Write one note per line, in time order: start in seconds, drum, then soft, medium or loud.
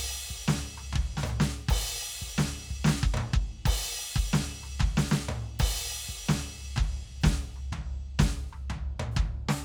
0.31 kick medium
0.42 hi-hat pedal soft
0.48 snare loud
0.48 floor tom loud
0.78 floor tom medium
0.93 kick loud
0.93 floor tom loud
1.18 snare medium
1.24 hi-hat pedal medium
1.24 high tom loud
1.30 floor tom medium
1.41 snare loud
1.69 kick loud
1.69 crash loud
2.23 kick medium
2.30 hi-hat pedal medium
2.39 snare loud
2.39 floor tom loud
2.71 kick medium
2.85 snare loud
2.88 snare loud
3.04 kick loud
3.15 high tom loud
3.18 high tom loud
3.34 kick loud
3.66 kick loud
3.66 crash loud
4.17 kick loud
4.27 hi-hat pedal soft
4.34 snare loud
4.34 floor tom loud
4.64 floor tom medium
4.80 kick loud
4.80 floor tom loud
4.98 snare loud
5.09 snare loud
5.09 hi-hat pedal medium
5.29 high tom loud
5.60 kick loud
5.60 crash loud
6.09 kick medium
6.26 snare loud
6.26 hi-hat pedal soft
6.30 floor tom loud
6.61 floor tom soft
6.77 kick loud
6.77 floor tom loud
7.22 kick loud
7.22 snare loud
7.22 floor tom loud
7.22 hi-hat pedal soft
7.57 floor tom soft
7.73 kick medium
7.73 floor tom loud
8.20 kick loud
8.20 snare loud
8.20 floor tom loud
8.53 floor tom medium
8.71 kick medium
8.71 floor tom loud
9.00 high tom loud
9.12 hi-hat pedal soft
9.17 kick loud
9.17 floor tom loud
9.49 snare loud